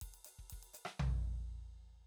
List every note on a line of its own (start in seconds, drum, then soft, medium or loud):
0.01 kick soft
0.01 ride medium
0.14 ride soft
0.25 hi-hat pedal soft
0.25 ride medium
0.39 kick soft
0.50 kick soft
0.50 ride medium
0.63 ride soft
0.73 hi-hat pedal medium
0.73 ride medium
0.85 cross-stick medium
0.99 floor tom loud